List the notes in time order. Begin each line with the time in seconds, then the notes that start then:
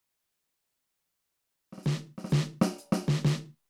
1.72 snare
1.78 snare
1.83 snare, hi-hat pedal
2.18 snare
2.24 snare
2.30 snare, hi-hat pedal
2.61 snare
2.78 hi-hat pedal
2.92 snare
3.08 snare
3.25 snare, hi-hat pedal